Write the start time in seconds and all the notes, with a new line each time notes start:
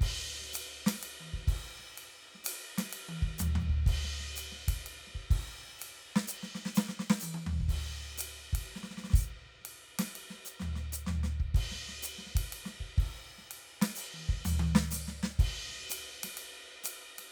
0.01 kick, ride
0.41 snare
0.53 hi-hat pedal, ride
0.86 snare, ride
0.97 hi-hat pedal
1.03 ride
1.20 high tom
1.33 kick
1.47 kick, crash
1.79 snare
1.97 hi-hat pedal, ride
2.34 snare
2.44 hi-hat pedal, ride
2.78 snare, ride
2.89 hi-hat pedal, ride
3.08 high tom
3.22 kick
3.38 floor tom, hi-hat pedal
3.55 floor tom
3.59 hi-hat pedal
3.69 kick
3.86 kick, ride
4.04 snare
4.19 snare
4.36 hi-hat pedal, ride
4.51 snare
4.68 kick, ride
4.86 ride
5.06 snare
5.15 kick
5.30 kick, crash
5.67 snare
5.79 hi-hat pedal, ride
6.16 snare
6.27 hi-hat pedal, ride
6.42 snare
6.55 snare
6.65 snare
6.75 snare, hi-hat pedal
6.88 snare
6.99 snare
7.10 snare
7.20 hi-hat pedal, high tom
7.34 high tom
7.46 floor tom
7.60 kick
7.68 kick, crash, ride
8.18 hi-hat pedal, ride
8.53 kick, ride
8.62 hi-hat pedal, ride
8.75 snare
8.83 snare
8.90 snare
8.97 snare
9.04 snare
9.10 kick, snare
9.15 open hi-hat
9.61 snare
9.65 ride
9.99 snare, ride
10.15 ride
10.30 snare
10.45 hi-hat pedal
10.60 snare, floor tom
10.75 snare
10.92 hi-hat pedal
11.06 snare, floor tom
11.23 snare
11.39 kick
11.54 kick, ride
11.71 snare
11.88 snare
12.02 hi-hat pedal, ride
12.18 snare
12.26 snare
12.35 kick, ride
12.52 ride
12.65 snare
12.80 kick
12.97 kick, crash
13.38 snare
13.51 ride
13.81 snare, ride
13.95 hi-hat pedal, ride
14.13 high tom
14.29 kick
14.45 floor tom, hi-hat pedal
14.59 open hi-hat, high tom
14.75 snare
14.91 snare, hi-hat pedal
15.07 snare
15.23 snare
15.39 kick, ride
15.68 snare
15.74 snare
15.78 snare
15.81 snare
15.83 snare
15.89 hi-hat pedal, ride
16.23 snare, ride
16.36 hi-hat pedal, ride
16.84 hi-hat pedal, ride
17.18 snare, ride